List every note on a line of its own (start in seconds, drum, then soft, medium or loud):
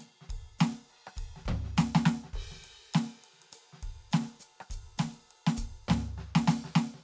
0.01 hi-hat pedal soft
0.01 ride medium
0.22 snare soft
0.31 kick soft
0.31 ride medium
0.37 kick soft
0.40 kick soft
0.60 snare loud
0.60 hi-hat pedal medium
0.60 ride loud
0.71 snare soft
0.91 ride soft
1.08 cross-stick medium
1.17 kick soft
1.17 hi-hat pedal soft
1.17 ride loud
1.24 kick soft
1.28 kick soft
1.37 snare soft
1.47 kick medium
1.47 floor tom loud
1.56 kick soft
1.66 snare soft
1.78 snare loud
1.78 hi-hat pedal loud
1.96 snare loud
2.07 snare loud
2.25 snare soft
2.35 kick medium
2.35 crash medium
2.45 kick soft
2.52 snare soft
2.61 cross-stick soft
2.61 snare soft
2.65 ride medium
2.95 snare loud
2.95 hi-hat pedal medium
2.95 ride loud
3.22 hi-hat pedal soft
3.22 ride medium
3.34 snare soft
3.40 snare soft
3.40 ride medium
3.45 snare soft
3.53 hi-hat pedal medium
3.53 ride loud
3.74 snare soft
3.81 kick soft
3.81 snare soft
3.81 ride medium
3.90 kick soft
3.93 kick soft
4.13 snare loud
4.13 hi-hat pedal medium
4.13 ride loud
4.22 snare soft
4.41 hi-hat pedal medium
4.41 ride medium
4.62 cross-stick medium
4.71 kick soft
4.71 snare soft
4.71 hi-hat pedal medium
4.71 ride medium
4.80 kick soft
4.99 kick soft
4.99 snare loud
4.99 hi-hat pedal loud
4.99 ride loud
5.32 ride medium
5.48 snare loud
5.58 kick medium
5.58 hi-hat pedal loud
5.58 ride medium
5.66 kick soft
5.70 kick soft
5.90 snare loud
5.90 floor tom loud
5.98 snare soft
6.19 snare medium
6.37 snare loud
6.49 snare loud
6.49 hi-hat pedal loud
6.58 snare soft
6.65 snare medium
6.77 snare loud
6.95 snare soft